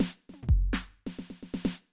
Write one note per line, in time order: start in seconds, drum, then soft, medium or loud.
0.00 snare loud
0.29 snare soft
0.34 high tom soft
0.43 floor tom medium
0.49 kick loud
0.73 snare loud
1.06 snare medium
1.19 snare medium
1.30 snare soft
1.43 snare soft
1.54 snare medium
1.65 snare loud